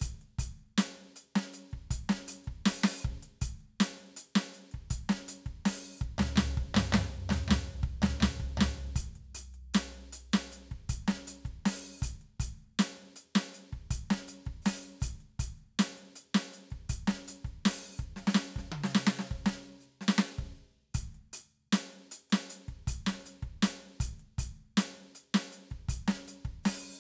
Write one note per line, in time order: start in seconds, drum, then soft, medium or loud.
0.01 closed hi-hat loud
0.01 kick medium
0.01 hi-hat pedal soft
0.22 closed hi-hat soft
0.39 closed hi-hat loud
0.39 kick medium
0.60 closed hi-hat soft
0.78 closed hi-hat loud
0.78 snare loud
1.17 closed hi-hat medium
1.36 snare loud
1.54 closed hi-hat medium
1.72 kick soft
1.72 closed hi-hat soft
1.91 closed hi-hat loud
1.91 kick medium
2.10 snare loud
2.10 closed hi-hat soft
2.29 closed hi-hat loud
2.45 kick soft
2.45 closed hi-hat soft
2.66 open hi-hat loud
2.66 snare loud
2.84 open hi-hat loud
2.84 snare loud
3.03 kick medium
3.03 hi-hat pedal medium
3.23 closed hi-hat medium
3.42 closed hi-hat loud
3.42 kick medium
3.61 closed hi-hat soft
3.81 closed hi-hat loud
3.81 snare loud
4.00 closed hi-hat soft
4.17 closed hi-hat loud
4.36 snare loud
4.36 closed hi-hat medium
4.54 closed hi-hat medium
4.72 kick soft
4.72 closed hi-hat soft
4.91 closed hi-hat loud
4.91 kick medium
5.10 snare loud
5.29 closed hi-hat loud
5.47 kick soft
5.47 closed hi-hat soft
5.66 open hi-hat loud
5.66 snare loud
6.01 kick medium
6.01 hi-hat pedal medium
6.19 snare loud
6.19 floor tom loud
6.36 snare loud
6.36 floor tom loud
6.36 hi-hat pedal medium
6.58 kick medium
6.75 snare loud
6.75 floor tom loud
6.93 snare loud
6.93 floor tom loud
6.99 floor tom medium
7.30 snare loud
7.30 floor tom loud
7.49 snare loud
7.49 floor tom loud
7.84 kick medium
8.03 snare loud
8.03 floor tom loud
8.21 snare loud
8.21 floor tom loud
8.40 kick medium
8.58 snare loud
8.58 floor tom loud
8.96 closed hi-hat loud
8.96 kick medium
9.16 closed hi-hat soft
9.35 closed hi-hat loud
9.55 closed hi-hat soft
9.75 closed hi-hat loud
9.75 snare loud
9.94 closed hi-hat soft
10.13 closed hi-hat loud
10.34 snare loud
10.34 closed hi-hat soft
10.53 closed hi-hat medium
10.72 kick soft
10.72 closed hi-hat soft
10.90 closed hi-hat loud
10.90 kick medium
11.08 snare loud
11.28 closed hi-hat loud
11.46 kick soft
11.46 closed hi-hat soft
11.66 open hi-hat loud
11.66 snare loud
12.01 closed hi-hat loud
12.01 kick medium
12.01 hi-hat pedal medium
12.22 closed hi-hat soft
12.40 closed hi-hat loud
12.40 kick medium
12.61 closed hi-hat soft
12.80 closed hi-hat loud
12.80 snare loud
12.98 closed hi-hat soft
13.17 closed hi-hat medium
13.36 snare loud
13.36 closed hi-hat medium
13.55 closed hi-hat medium
13.73 kick soft
13.73 closed hi-hat soft
13.91 closed hi-hat loud
13.91 kick medium
14.11 snare loud
14.29 closed hi-hat medium
14.46 kick medium
14.46 closed hi-hat soft
14.63 open hi-hat loud
14.63 snare loud
14.63 hi-hat pedal soft
15.01 closed hi-hat loud
15.01 kick medium
15.01 hi-hat pedal medium
15.21 closed hi-hat soft
15.40 closed hi-hat loud
15.40 kick medium
15.59 closed hi-hat soft
15.80 closed hi-hat loud
15.80 snare loud
15.99 closed hi-hat soft
16.16 closed hi-hat medium
16.35 snare loud
16.35 closed hi-hat medium
16.54 closed hi-hat medium
16.71 kick soft
16.71 closed hi-hat soft
16.90 closed hi-hat loud
16.90 kick medium
17.08 snare loud
17.29 closed hi-hat loud
17.45 kick soft
17.45 closed hi-hat soft
17.66 open hi-hat loud
17.66 snare loud
17.99 kick medium
17.99 hi-hat pedal soft
18.17 snare medium
18.28 snare loud
18.35 snare loud
18.35 hi-hat pedal medium
18.57 kick medium
18.57 snare soft
18.65 snare soft
18.73 high tom loud
18.77 kick soft
18.84 snare loud
18.95 snare loud
19.07 snare loud
19.20 snare medium
19.32 kick medium
19.47 snare loud
19.81 hi-hat pedal soft
20.02 snare medium
20.09 snare loud
20.39 kick medium
20.95 closed hi-hat loud
20.95 kick medium
21.15 closed hi-hat soft
21.34 closed hi-hat loud
21.54 closed hi-hat soft
21.73 closed hi-hat loud
21.73 snare loud
21.93 closed hi-hat soft
22.10 closed hi-hat loud
22.10 hi-hat pedal soft
22.31 snare loud
22.31 closed hi-hat soft
22.50 closed hi-hat loud
22.69 kick soft
22.69 closed hi-hat soft
22.87 closed hi-hat loud
22.87 kick medium
22.87 cross-stick soft
23.07 snare loud
23.07 closed hi-hat soft
23.26 closed hi-hat medium
23.43 kick soft
23.43 closed hi-hat soft
23.63 open hi-hat loud
23.63 snare loud
23.63 hi-hat pedal medium
24.01 closed hi-hat loud
24.01 kick medium
24.01 hi-hat pedal medium
24.20 closed hi-hat soft
24.39 closed hi-hat loud
24.39 kick medium
24.59 closed hi-hat soft
24.78 closed hi-hat loud
24.78 snare loud
24.97 closed hi-hat soft
25.16 closed hi-hat medium
25.35 snare loud
25.35 closed hi-hat soft
25.53 closed hi-hat medium
25.71 kick soft
25.71 closed hi-hat soft
25.89 closed hi-hat loud
25.89 kick medium
26.08 snare loud
26.28 closed hi-hat medium
26.45 kick medium
26.45 closed hi-hat soft
26.64 open hi-hat loud
26.64 snare loud
26.64 hi-hat pedal soft